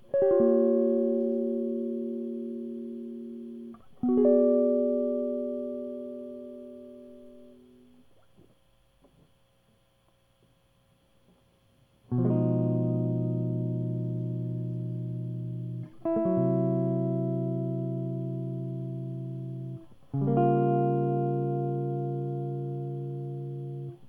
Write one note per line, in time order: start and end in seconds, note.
0.15 2.67 C#5
0.23 3.70 G4
0.32 3.76 F4
0.41 3.79 A#3
4.04 6.75 B3
4.10 7.50 F#4
4.18 6.50 G#4
4.26 7.29 D5
12.14 15.89 B2
12.20 15.90 F3
12.26 14.22 G#3
12.31 15.93 D#4
16.06 19.87 E4
16.18 16.24 A3
16.27 19.79 F#3
16.31 19.77 C3
20.16 23.93 C#3
20.23 23.70 G3
20.28 23.71 A#3
20.38 23.97 F4